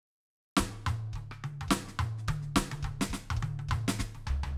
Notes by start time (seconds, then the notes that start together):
0.57 kick, snare, mid tom
0.86 snare, mid tom
1.13 kick, high tom
1.31 cross-stick
1.44 high tom
1.61 mid tom
1.68 kick, snare
1.88 snare
1.99 mid tom
2.18 snare
2.28 kick, high tom
2.42 snare
2.56 kick, snare
2.71 high tom
2.83 kick, mid tom
3.01 snare
3.10 kick, snare
3.30 mid tom
3.36 kick
3.43 high tom
3.59 high tom
3.68 kick, mid tom
3.88 snare
3.99 kick, snare
4.15 crash, high tom
4.27 kick, floor tom
4.43 floor tom